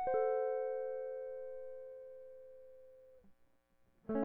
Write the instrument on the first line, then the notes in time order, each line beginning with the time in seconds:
electric guitar
0.00 F#5
0.07 C5
0.13 A4